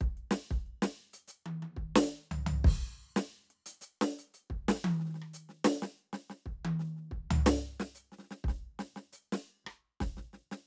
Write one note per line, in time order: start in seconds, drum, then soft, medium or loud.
0.01 kick medium
0.01 closed hi-hat soft
0.18 closed hi-hat soft
0.31 snare loud
0.51 kick medium
0.51 closed hi-hat soft
0.67 closed hi-hat soft
0.83 snare loud
1.14 closed hi-hat medium
1.28 hi-hat pedal medium
1.46 high tom medium
1.63 high tom medium
1.77 kick medium
1.96 snare loud
2.32 floor tom medium
2.47 floor tom loud
2.65 kick loud
2.65 crash medium
3.00 closed hi-hat soft
3.17 snare loud
3.33 closed hi-hat soft
3.51 closed hi-hat soft
3.66 closed hi-hat medium
3.82 hi-hat pedal medium
4.02 snare medium
4.19 closed hi-hat medium
4.34 closed hi-hat soft
4.50 kick medium
4.69 snare loud
4.75 snare soft
4.85 high tom loud
5.00 snare soft
5.06 snare soft
5.10 snare soft
5.15 snare soft
5.22 cross-stick soft
5.34 hi-hat pedal medium
5.49 snare soft
5.65 snare loud
5.83 snare medium
6.13 snare medium
6.30 snare soft
6.46 kick medium
6.65 high tom loud
6.80 snare soft
6.97 snare soft
7.12 kick medium
7.31 floor tom loud
7.47 snare loud
7.80 snare medium
7.95 hi-hat pedal medium
8.12 snare soft
8.19 snare soft
8.24 snare soft
8.31 snare soft
8.45 kick medium
8.49 snare soft
8.80 snare medium
8.97 snare soft
9.13 hi-hat pedal medium
9.33 snare loud
9.65 kick soft
9.65 cross-stick medium
10.01 kick medium
10.01 snare medium
10.17 snare soft
10.34 snare soft
10.52 snare medium